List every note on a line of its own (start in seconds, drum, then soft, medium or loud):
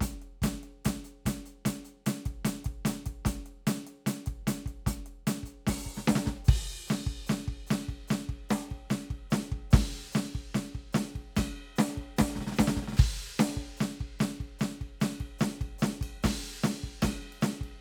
0.01 closed hi-hat loud
0.01 kick medium
0.01 snare medium
0.12 kick soft
0.22 closed hi-hat soft
0.42 closed hi-hat loud
0.42 kick medium
0.42 snare loud
0.64 closed hi-hat soft
0.85 closed hi-hat loud
0.85 kick soft
0.85 snare loud
1.05 closed hi-hat medium
1.26 closed hi-hat loud
1.26 kick soft
1.26 snare loud
1.46 closed hi-hat medium
1.66 closed hi-hat loud
1.66 kick soft
1.66 snare loud
1.85 closed hi-hat medium
2.06 closed hi-hat loud
2.06 snare loud
2.26 kick medium
2.26 closed hi-hat medium
2.45 closed hi-hat loud
2.45 snare loud
2.65 kick medium
2.65 closed hi-hat medium
2.85 closed hi-hat loud
2.85 snare loud
2.90 snare medium
3.06 kick medium
3.06 closed hi-hat medium
3.25 open hi-hat loud
3.25 kick medium
3.25 snare loud
3.46 closed hi-hat soft
3.67 closed hi-hat loud
3.67 snare loud
3.87 closed hi-hat medium
4.07 closed hi-hat loud
4.07 snare loud
4.26 kick medium
4.26 closed hi-hat medium
4.47 closed hi-hat loud
4.47 snare loud
4.66 kick soft
4.66 closed hi-hat soft
4.87 open hi-hat loud
4.87 kick medium
4.87 snare medium
5.06 closed hi-hat soft
5.27 closed hi-hat loud
5.27 snare loud
5.43 closed hi-hat medium
5.43 kick soft
5.67 open hi-hat loud
5.67 kick medium
5.67 snare loud
5.86 open hi-hat soft
5.86 kick soft
5.97 snare medium
6.05 snare loud
6.05 hi-hat pedal medium
6.11 kick soft
6.16 snare loud
6.26 kick medium
6.26 snare medium
6.45 kick loud
6.45 hi-hat pedal medium
6.45 crash loud
6.55 snare soft
6.88 snare loud
6.88 hi-hat pedal medium
6.88 crash medium
6.94 ride soft
7.07 kick medium
7.27 snare loud
7.27 hi-hat pedal medium
7.27 ride bell soft
7.48 kick medium
7.67 snare loud
7.67 hi-hat pedal medium
7.71 ride bell medium
7.89 kick soft
7.89 ride bell soft
8.08 snare loud
8.08 hi-hat pedal medium
8.08 ride bell medium
8.29 kick medium
8.29 ride soft
8.50 snare loud
8.50 hi-hat pedal medium
8.50 ride bell medium
8.71 kick soft
8.71 ride soft
8.90 snare loud
8.90 hi-hat pedal medium
8.90 ride bell medium
9.11 kick medium
9.11 ride soft
9.31 snare loud
9.31 hi-hat pedal medium
9.31 ride bell soft
9.52 kick medium
9.71 kick loud
9.71 snare loud
9.71 hi-hat pedal medium
9.71 crash loud
10.12 snare loud
10.12 hi-hat pedal medium
10.12 ride bell medium
10.35 kick medium
10.35 ride soft
10.55 snare loud
10.55 hi-hat pedal medium
10.55 ride bell medium
10.75 kick soft
10.75 ride soft
10.93 snare loud
10.93 hi-hat pedal medium
10.93 ride bell medium
11.16 kick soft
11.16 ride soft
11.36 kick medium
11.36 snare loud
11.36 hi-hat pedal medium
11.36 ride bell loud
11.57 ride soft
11.76 snare loud
11.76 hi-hat pedal medium
11.76 ride bell medium
11.98 kick soft
11.98 ride soft
12.17 snare loud
12.17 hi-hat pedal medium
12.17 ride loud
12.21 kick medium
12.36 kick soft
12.36 snare medium
12.41 snare medium
12.47 snare medium
12.52 snare medium
12.56 kick medium
12.56 snare loud
12.56 hi-hat pedal medium
12.68 snare loud
12.76 kick medium
12.76 snare medium
12.82 snare medium
12.88 snare medium
12.93 snare medium
12.97 kick loud
12.97 hi-hat pedal medium
12.97 crash loud
13.39 snare loud
13.39 hi-hat pedal medium
13.39 ride bell medium
13.57 kick medium
13.77 snare loud
13.77 hi-hat pedal medium
13.77 ride bell soft
14.00 kick medium
14.00 ride bell soft
14.20 snare loud
14.20 hi-hat pedal medium
14.20 ride bell soft
14.40 kick soft
14.40 ride soft
14.59 snare loud
14.59 hi-hat pedal medium
14.59 ride bell medium
14.81 kick soft
14.81 ride bell soft
15.01 snare loud
15.01 hi-hat pedal medium
15.01 ride bell medium
15.20 kick soft
15.20 ride soft
15.39 snare loud
15.39 hi-hat pedal medium
15.61 kick medium
15.61 ride bell soft
15.72 kick soft
15.79 snare loud
15.79 hi-hat pedal medium
16.01 kick medium
16.01 ride bell medium
16.23 kick medium
16.23 snare loud
16.23 hi-hat pedal medium
16.23 crash loud
16.63 snare loud
16.63 hi-hat pedal medium
16.63 ride bell medium
16.84 kick soft
17.02 kick medium
17.02 snare loud
17.02 hi-hat pedal medium
17.02 ride bell loud
17.23 ride bell soft
17.33 ride medium
17.42 snare loud
17.42 hi-hat pedal medium
17.42 ride soft
17.61 kick soft
17.61 ride soft